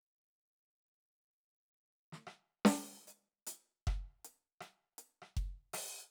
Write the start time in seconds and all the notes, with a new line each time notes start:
2.12 snare
2.27 cross-stick
2.65 open hi-hat, snare
3.07 closed hi-hat, hi-hat pedal
3.47 closed hi-hat
3.87 kick, cross-stick, closed hi-hat
4.25 closed hi-hat
4.61 cross-stick, closed hi-hat
4.98 closed hi-hat
5.22 cross-stick
5.37 kick, closed hi-hat
5.73 open hi-hat, cross-stick